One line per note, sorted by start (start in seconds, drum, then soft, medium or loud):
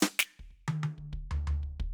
0.00 snare loud
0.00 hi-hat pedal medium
0.19 snare loud
0.39 kick soft
0.51 kick soft
0.68 high tom loud
0.83 high tom medium
0.98 kick soft
1.13 kick soft
1.31 floor tom loud
1.47 floor tom medium
1.63 kick soft
1.80 kick soft